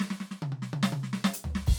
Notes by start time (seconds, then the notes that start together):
0.01 snare
0.10 snare
0.20 snare
0.31 snare
0.42 high tom
0.52 high tom
0.62 snare
0.73 high tom
0.83 snare
0.92 high tom
1.03 snare
1.13 snare
1.24 snare
1.34 closed hi-hat
1.44 floor tom
1.54 kick, snare
1.66 kick, crash